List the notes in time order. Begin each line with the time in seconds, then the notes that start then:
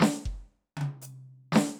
0.00 snare
0.02 snare, hi-hat pedal
0.25 kick
0.77 high tom
0.81 high tom
1.02 hi-hat pedal
1.52 snare
1.56 snare
1.61 snare
1.64 snare
1.67 snare